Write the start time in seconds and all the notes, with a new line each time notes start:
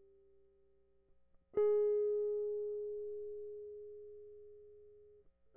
1.58 G#4